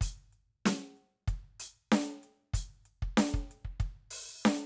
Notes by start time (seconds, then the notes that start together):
0.01 closed hi-hat, kick
0.33 closed hi-hat
0.66 closed hi-hat, snare
0.97 closed hi-hat
1.28 kick, closed hi-hat
1.60 open hi-hat
1.92 open hi-hat, snare, hi-hat pedal
2.23 closed hi-hat
2.54 closed hi-hat, kick
2.86 closed hi-hat
3.02 kick
3.18 closed hi-hat, snare
3.34 kick
3.51 closed hi-hat
3.65 kick
3.80 kick, closed hi-hat
4.11 open hi-hat
4.44 snare, hi-hat pedal